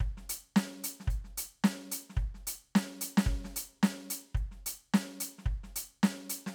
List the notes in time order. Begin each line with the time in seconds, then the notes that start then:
0.01 kick, closed hi-hat
0.18 snare
0.30 closed hi-hat
0.57 snare
0.85 closed hi-hat
1.01 snare
1.08 closed hi-hat, kick
1.25 snare
1.38 closed hi-hat
1.65 snare
1.92 closed hi-hat
2.10 snare
2.17 kick, closed hi-hat
2.35 snare
2.48 closed hi-hat
2.76 snare
3.02 closed hi-hat
3.18 snare
3.27 kick, closed hi-hat
3.45 snare
3.57 closed hi-hat
3.84 snare
4.11 closed hi-hat
4.35 kick, closed hi-hat
4.52 snare
4.67 closed hi-hat
4.95 snare
5.21 closed hi-hat
5.39 snare
5.46 kick
5.64 snare
5.77 closed hi-hat
6.04 snare
6.30 closed hi-hat
6.47 snare